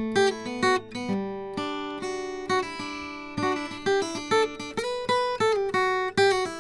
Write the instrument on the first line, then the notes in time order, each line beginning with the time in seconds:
acoustic guitar
0.00 A3
0.17 G4
0.30 E4
0.47 B3
0.64 F#4
0.78 E4
0.96 B3
1.10 G3
1.59 D4
2.04 F#4
2.51 F#4
2.61 E4
2.81 D4
3.40 D4
3.44 F#4
3.54 E4
3.73 D4
3.88 G4
4.04 E4
4.17 D4
4.33 A4
4.61 D4
4.79 B4
5.11 B4
5.42 A4
5.54 G4
5.75 F#4
6.19 G4
6.33 F#4
6.47 E4